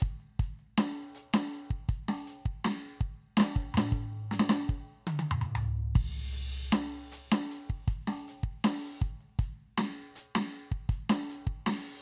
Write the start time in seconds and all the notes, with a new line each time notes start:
0.01 closed hi-hat, kick, hi-hat pedal
0.20 closed hi-hat
0.40 closed hi-hat, kick
0.59 closed hi-hat
0.78 closed hi-hat, snare
0.97 closed hi-hat
1.14 open hi-hat, hi-hat pedal
1.33 snare, closed hi-hat
1.52 closed hi-hat
1.71 kick, closed hi-hat
1.89 closed hi-hat, kick
2.09 snare
2.27 closed hi-hat
2.46 kick, closed hi-hat
2.65 open hi-hat, snare
3.01 kick, hi-hat pedal
3.37 snare, hi-hat pedal
3.40 snare
3.56 kick
3.73 hi-hat pedal, mid tom
3.78 snare
3.92 kick
4.31 snare
4.40 snare
4.48 snare, hi-hat pedal
4.69 kick
5.07 high tom
5.19 high tom
5.31 mid tom
5.42 mid tom
5.55 floor tom
5.95 kick, ride
6.33 closed hi-hat
6.52 closed hi-hat
6.72 closed hi-hat, snare
7.12 closed hi-hat
7.32 snare, closed hi-hat
7.51 closed hi-hat
7.69 kick, closed hi-hat
7.88 closed hi-hat, kick
8.08 snare, closed hi-hat
8.28 closed hi-hat
8.43 kick, closed hi-hat
8.64 open hi-hat, snare
9.01 closed hi-hat, kick, hi-hat pedal
9.21 closed hi-hat
9.39 closed hi-hat, kick
9.60 closed hi-hat
9.78 closed hi-hat, snare
9.96 closed hi-hat
10.16 closed hi-hat
10.35 snare
10.53 closed hi-hat
10.72 kick, closed hi-hat
10.89 closed hi-hat, kick
11.10 snare
11.29 closed hi-hat
11.47 kick, closed hi-hat
11.67 open hi-hat, snare